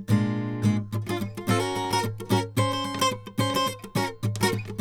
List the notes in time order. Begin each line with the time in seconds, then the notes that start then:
0.10 A#2 G#3 D4 F4
0.64 A#2 G#3 D4
1.03 A#2
1.11 D4 F4
1.39 F4
1.49 C4 F4 A4
1.61 C#4 F#4 A#4
1.76 F#4 A#4
1.93 F#4 A#4
2.02 F4
2.32 C#4 F#4 A#4
2.58 C#4 C5
2.73 C5
2.85 C5
3.40 C#4 C5
3.55 C#4 C5
3.69 C5
3.97 C#4 F#4 A#4
4.42 C#4 F#4 A#4